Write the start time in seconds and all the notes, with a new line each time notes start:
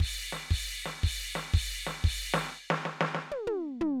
0.00 kick, crash
0.32 snare
0.49 kick, crash
0.86 snare
1.02 kick, crash
1.35 snare
1.52 kick, crash
1.87 snare
2.04 kick, crash
2.34 snare
2.70 snare
2.85 snare
3.01 snare
3.14 snare
3.31 high tom
3.47 mid tom
3.80 floor tom